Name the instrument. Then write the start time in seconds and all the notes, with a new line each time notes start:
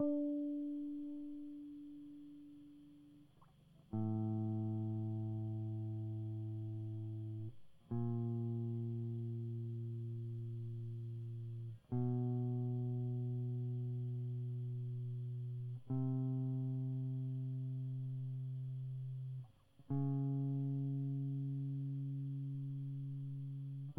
electric guitar
0.00 D4
3.94 A2
7.92 A#2
11.93 B2
15.91 C3
19.91 C#3